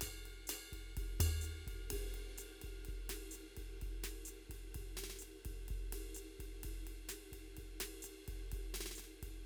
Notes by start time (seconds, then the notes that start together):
0.01 kick, snare, ride bell
0.08 kick
0.25 ride
0.47 snare, hi-hat pedal, ride bell
0.73 kick, ride
0.97 kick, ride
1.03 kick
1.20 floor tom, ride bell
1.41 hi-hat pedal, ride
1.67 kick, ride
1.72 kick
1.90 kick, ride
1.98 kick
2.14 ride
2.38 hi-hat pedal, ride
2.62 kick, ride
2.85 kick, ride
2.93 kick
3.09 snare, ride
3.31 hi-hat pedal, ride
3.57 kick, ride
3.81 kick, ride
3.87 kick
4.03 snare, ride
4.25 hi-hat pedal, ride
4.50 kick, ride
4.55 kick
4.75 kick, ride
4.81 kick
4.97 snare, ride
5.04 snare
5.10 snare
5.16 snare, hi-hat pedal
5.22 snare, ride
5.27 snare
5.34 snare
5.39 snare
5.45 kick, ride
5.51 kick
5.68 kick, ride
5.76 kick
5.89 kick, ride
5.93 snare
6.15 hi-hat pedal, ride
6.40 kick, ride
6.52 snare
6.63 kick, snare, ride
6.70 kick
6.87 ride
7.09 snare, hi-hat pedal, ride
7.32 kick, ride
7.57 kick, ride
7.63 kick
7.80 snare, ride
8.02 hi-hat pedal, ride
8.28 kick, ride
8.33 kick
8.52 kick, ride
8.58 kick
8.74 snare, ride
8.81 snare
8.86 snare
8.91 snare
8.95 snare, hi-hat pedal
9.00 ride
9.04 snare
9.11 snare
9.20 kick, snare, ride
9.28 kick